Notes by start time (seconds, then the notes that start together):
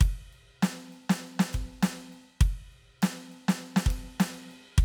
0.01 kick, ride
0.33 ride
0.63 snare, ride bell
0.93 ride bell
1.10 snare
1.23 ride
1.40 snare
1.53 kick, ride bell
1.83 snare, ride bell
2.12 ride bell
2.41 kick, ride
2.73 ride
3.02 snare, ride bell
3.32 ride bell
3.49 snare
3.76 snare
3.86 kick
3.91 ride
4.20 snare, ride
4.51 ride bell
4.78 kick, ride bell